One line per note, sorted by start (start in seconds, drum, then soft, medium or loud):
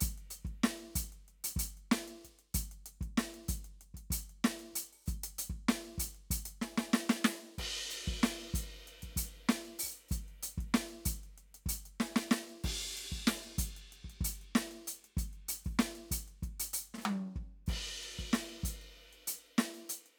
0.01 closed hi-hat loud
0.01 kick medium
0.18 closed hi-hat soft
0.31 closed hi-hat medium
0.45 kick soft
0.45 closed hi-hat soft
0.64 snare loud
0.78 closed hi-hat soft
0.96 closed hi-hat loud
0.96 kick soft
1.13 closed hi-hat soft
1.28 closed hi-hat soft
1.44 closed hi-hat loud
1.57 closed hi-hat loud
1.57 kick medium
1.78 closed hi-hat soft
1.92 snare loud
2.08 closed hi-hat soft
2.25 kick soft
2.25 closed hi-hat medium
2.39 closed hi-hat soft
2.55 closed hi-hat loud
2.55 kick medium
2.72 closed hi-hat soft
2.86 closed hi-hat medium
3.01 kick soft
3.01 closed hi-hat soft
3.18 snare loud
3.34 closed hi-hat soft
3.49 closed hi-hat loud
3.49 kick medium
3.65 closed hi-hat soft
3.81 closed hi-hat soft
3.95 kick soft
3.95 closed hi-hat medium
4.11 closed hi-hat loud
4.11 kick soft
4.30 closed hi-hat soft
4.45 snare loud
4.60 closed hi-hat soft
4.73 closed hi-hat loud
4.73 kick soft
4.93 open hi-hat soft
5.06 closed hi-hat medium
5.06 kick medium
5.06 hi-hat pedal medium
5.24 closed hi-hat loud
5.39 closed hi-hat loud
5.50 kick soft
5.69 snare loud
5.85 closed hi-hat soft
5.98 closed hi-hat loud
5.98 kick soft
6.15 closed hi-hat soft
6.31 closed hi-hat loud
6.31 kick medium
6.46 closed hi-hat loud
6.62 snare medium
6.78 snare loud
6.94 snare loud
7.10 snare loud
7.25 snare loud
7.59 kick soft
7.59 crash loud
7.72 closed hi-hat soft
7.91 closed hi-hat medium
8.08 kick medium
8.08 closed hi-hat soft
8.24 snare loud
8.40 closed hi-hat soft
8.54 closed hi-hat loud
8.54 kick medium
8.72 closed hi-hat soft
8.88 closed hi-hat medium
9.03 kick soft
9.03 closed hi-hat medium
9.17 closed hi-hat loud
9.17 kick soft
9.36 closed hi-hat soft
9.49 snare loud
9.65 closed hi-hat soft
9.79 open hi-hat loud
9.84 kick soft
9.97 open hi-hat soft
10.09 closed hi-hat medium
10.09 kick medium
10.09 hi-hat pedal medium
10.29 closed hi-hat soft
10.43 closed hi-hat loud
10.58 kick soft
10.58 closed hi-hat soft
10.74 snare loud
10.89 closed hi-hat soft
11.06 closed hi-hat loud
11.06 kick medium
11.24 closed hi-hat soft
11.38 closed hi-hat soft
11.55 closed hi-hat medium
11.66 closed hi-hat loud
11.66 kick soft
11.86 closed hi-hat medium
12.00 snare loud
12.16 snare loud
12.31 snare loud
12.50 closed hi-hat soft
12.64 kick medium
12.64 ride loud
12.81 open hi-hat soft
12.97 closed hi-hat medium
13.12 kick soft
13.12 closed hi-hat soft
13.28 snare loud
13.44 closed hi-hat soft
13.59 closed hi-hat loud
13.59 kick medium
13.77 closed hi-hat soft
13.93 closed hi-hat soft
14.05 kick soft
14.10 open hi-hat soft
14.21 closed hi-hat loud
14.21 kick medium
14.42 closed hi-hat soft
14.56 snare loud
14.71 closed hi-hat soft
14.88 closed hi-hat loud
15.05 closed hi-hat soft
15.17 closed hi-hat medium
15.17 kick medium
15.33 open hi-hat soft
15.49 closed hi-hat loud
15.65 kick soft
15.65 open hi-hat soft
15.79 snare loud
15.96 closed hi-hat soft
16.12 closed hi-hat loud
16.12 kick soft
16.28 closed hi-hat soft
16.43 kick soft
16.43 closed hi-hat medium
16.60 closed hi-hat loud
16.74 open hi-hat loud
16.94 snare soft
16.98 snare medium
17.01 snare soft
17.01 hi-hat pedal medium
17.04 snare soft
17.04 high tom loud
17.36 kick soft
17.67 kick medium
17.67 hi-hat pedal medium
17.67 crash loud
18.03 closed hi-hat soft
18.19 kick soft
18.19 closed hi-hat soft
18.33 snare loud
18.50 closed hi-hat soft
18.64 closed hi-hat loud
18.64 kick medium
18.82 closed hi-hat soft
19.13 closed hi-hat soft
19.28 closed hi-hat loud
19.44 closed hi-hat soft
19.59 snare loud
19.74 open hi-hat soft
19.90 closed hi-hat loud
20.06 closed hi-hat soft